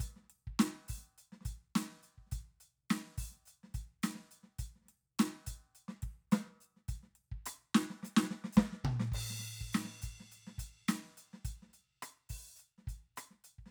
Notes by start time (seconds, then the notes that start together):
0.01 closed hi-hat, kick
0.17 snare
0.24 snare
0.31 closed hi-hat
0.48 kick
0.60 open hi-hat, snare
0.89 open hi-hat, kick
0.98 snare
1.19 closed hi-hat
1.33 snare
1.42 snare
1.46 closed hi-hat, kick
1.52 kick
1.76 open hi-hat, snare
2.04 closed hi-hat
2.19 kick
2.27 snare
2.33 closed hi-hat, kick
2.42 kick
2.61 closed hi-hat
2.91 closed hi-hat, snare
3.19 open hi-hat, kick
3.24 kick
3.32 snare
3.46 closed hi-hat, hi-hat pedal
3.64 snare
3.69 snare
3.73 closed hi-hat, kick, snare
3.81 kick
4.03 closed hi-hat, snare, hi-hat pedal
4.16 snare
4.32 closed hi-hat
4.44 snare
4.60 closed hi-hat, kick
4.76 snare
4.82 snare
4.86 snare, closed hi-hat
5.20 closed hi-hat, snare
5.48 closed hi-hat, kick
5.76 closed hi-hat
5.89 snare
6.03 kick, closed hi-hat
6.33 closed hi-hat, snare
6.46 snare
6.61 open hi-hat, hi-hat pedal
6.77 snare
6.89 closed hi-hat, kick
6.96 kick
7.04 snare
7.16 closed hi-hat
7.33 kick
7.47 closed hi-hat, cross-stick
7.76 snare
7.91 snare
8.04 snare, hi-hat pedal
8.18 snare
8.24 snare
8.32 snare
8.45 snare
8.54 hi-hat pedal
8.58 kick, snare
8.73 snare
8.85 kick, mid tom
9.01 snare
9.13 kick, crash
9.22 kick
9.31 snare
9.40 snare
9.45 closed hi-hat
9.62 kick
9.74 open hi-hat, snare
9.85 snare
10.03 closed hi-hat, kick
10.21 snare
10.33 closed hi-hat
10.48 snare
10.58 closed hi-hat, kick, snare
10.89 closed hi-hat, snare
11.18 closed hi-hat
11.34 snare
11.46 closed hi-hat, kick
11.51 kick
11.63 snare
11.69 snare
11.74 closed hi-hat
12.03 closed hi-hat, cross-stick
12.30 open hi-hat, kick
12.57 closed hi-hat, hi-hat pedal
12.79 snare
12.85 kick, snare
12.90 closed hi-hat
13.17 closed hi-hat, cross-stick, hi-hat pedal
13.31 snare
13.45 closed hi-hat
13.59 kick
13.67 snare